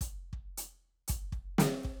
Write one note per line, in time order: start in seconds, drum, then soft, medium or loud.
0.06 closed hi-hat loud
0.06 kick medium
0.33 kick soft
0.58 closed hi-hat loud
1.08 closed hi-hat loud
1.08 kick medium
1.32 kick medium
1.32 closed hi-hat soft
1.58 closed hi-hat loud
1.58 snare loud
1.64 snare medium
1.84 kick medium
1.84 closed hi-hat soft